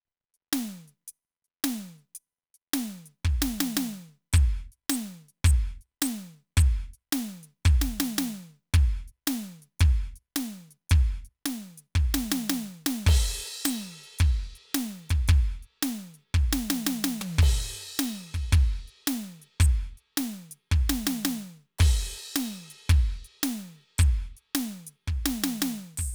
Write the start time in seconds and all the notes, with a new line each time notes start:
0.34 closed hi-hat
0.53 snare, closed hi-hat
0.87 closed hi-hat
1.08 closed hi-hat
1.44 closed hi-hat
1.64 snare, closed hi-hat
1.98 closed hi-hat
2.15 closed hi-hat
2.54 closed hi-hat
2.73 snare, closed hi-hat
3.05 closed hi-hat
3.25 kick
3.42 snare
3.60 snare
3.77 snare
4.33 closed hi-hat, kick
4.72 closed hi-hat
4.89 closed hi-hat, snare
5.28 closed hi-hat
5.44 closed hi-hat, kick
5.81 closed hi-hat
6.02 closed hi-hat, snare
6.57 closed hi-hat, kick
6.93 closed hi-hat
7.12 snare, closed hi-hat
7.43 closed hi-hat
7.65 closed hi-hat, kick
7.81 snare
8.00 snare
8.18 snare
8.74 kick, closed hi-hat
9.07 closed hi-hat
9.27 snare, closed hi-hat
9.62 closed hi-hat
9.79 kick, closed hi-hat
10.15 closed hi-hat
10.36 snare, closed hi-hat
10.70 closed hi-hat
10.89 kick, closed hi-hat
11.25 closed hi-hat
11.45 snare, closed hi-hat
11.77 closed hi-hat
11.95 kick
12.14 snare
12.31 snare
12.49 snare
12.86 snare
13.06 kick, crash
13.65 closed hi-hat, snare
14.03 closed hi-hat
14.19 kick, closed hi-hat
14.55 closed hi-hat
14.74 snare, closed hi-hat
15.09 kick, closed hi-hat
15.28 kick, closed hi-hat
15.62 closed hi-hat
15.82 snare, closed hi-hat
16.14 closed hi-hat
16.34 kick
16.52 snare
16.70 snare
16.86 snare
17.04 snare
17.21 high tom
17.38 kick, crash
17.99 snare, closed hi-hat
18.34 kick, closed hi-hat
18.52 kick, closed hi-hat
18.87 closed hi-hat
19.07 snare, closed hi-hat
19.41 closed hi-hat
19.60 closed hi-hat, kick
19.97 closed hi-hat
20.17 snare, closed hi-hat
20.51 closed hi-hat
20.71 kick
20.89 snare
21.07 snare
21.25 snare
21.78 kick, hi-hat pedal, crash
22.36 snare, closed hi-hat
22.70 closed hi-hat
22.89 kick, closed hi-hat
23.24 closed hi-hat
23.43 snare, closed hi-hat
23.81 closed hi-hat
23.98 closed hi-hat, kick
24.36 closed hi-hat
24.55 snare, closed hi-hat
24.86 closed hi-hat
25.07 kick
25.25 snare
25.44 snare
25.62 snare
25.97 open hi-hat, kick